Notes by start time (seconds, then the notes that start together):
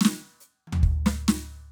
0.01 snare
0.05 snare
0.41 hi-hat pedal
0.68 high tom
0.73 floor tom
0.83 kick
1.06 snare
1.28 snare